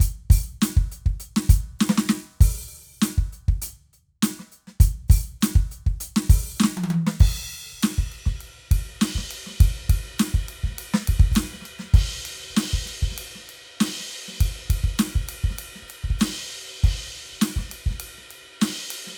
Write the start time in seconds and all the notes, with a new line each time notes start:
0.01 closed hi-hat, kick
0.31 open hi-hat, kick
0.62 closed hi-hat, snare, hi-hat pedal
0.78 kick
0.93 closed hi-hat
1.07 kick
1.21 closed hi-hat
1.37 snare
1.50 open hi-hat, kick
1.80 snare, hi-hat pedal
1.90 snare
1.99 snare
2.10 snare
2.42 open hi-hat, kick
2.95 kick
3.03 open hi-hat, snare, hi-hat pedal
3.19 kick
3.33 closed hi-hat
3.49 kick
3.63 closed hi-hat
3.94 closed hi-hat
4.23 closed hi-hat, snare
4.40 snare
4.53 closed hi-hat
4.68 snare
4.81 closed hi-hat, kick
5.09 open hi-hat, kick, hi-hat pedal
5.42 closed hi-hat, snare, hi-hat pedal
5.56 kick
5.72 closed hi-hat
5.87 kick
6.01 closed hi-hat
6.17 snare
6.30 open hi-hat, kick
6.61 snare, hi-hat pedal
6.65 snare
6.78 high tom
6.84 high tom
6.90 hi-hat pedal, high tom
7.08 snare
7.20 kick, hi-hat pedal, crash
7.74 kick
7.82 snare, hi-hat pedal, ride
7.99 kick
8.11 hi-hat pedal, ride
8.27 kick, snare
8.40 hi-hat pedal, ride
8.72 kick, ride
9.02 snare, hi-hat pedal, ride
9.16 kick, snare
9.32 ride
9.47 snare
9.51 snare
9.61 kick, hi-hat pedal, ride
9.90 kick, ride
10.19 snare, hi-hat pedal, ride
10.35 kick
10.48 hi-hat pedal, ride
10.64 kick, snare
10.71 snare
10.74 snare
10.79 hi-hat pedal, ride
10.95 snare
11.04 hi-hat pedal
11.08 kick, ride
11.20 kick
11.32 kick, hi-hat pedal, ride
11.37 snare
11.54 snare
11.62 snare, ride bell
11.80 snare
11.84 snare
11.88 snare
11.95 kick, hi-hat pedal, ride
12.26 ride
12.51 kick
12.57 snare, hi-hat pedal, ride
12.74 kick
12.86 snare, hi-hat pedal, ride
13.03 kick
13.12 snare
13.17 hi-hat pedal, ride
13.36 snare
13.50 ride
13.80 snare, hi-hat pedal, ride
14.01 snare
14.05 snare
14.11 ride
14.29 snare
14.34 snare
14.38 kick, snare, hi-hat pedal, ride
14.71 kick, ride
14.85 kick
14.99 snare, hi-hat pedal, ride
15.16 kick
15.29 hi-hat pedal, ride
15.45 kick
15.51 snare
15.57 hi-hat pedal, ride
15.76 snare
15.83 kick, snare
15.86 snare, hi-hat pedal
15.91 ride
16.05 kick
16.11 kick
16.20 snare, hi-hat pedal, ride
16.84 kick, ride
17.33 kick
17.42 snare, hi-hat pedal, ride
17.57 kick, snare
17.70 snare, hi-hat pedal, ride
17.87 kick, snare
18.01 ride
18.18 snare
18.32 ride
18.60 snare, hi-hat pedal, ride
18.91 ride
19.08 snare
19.10 snare
19.15 snare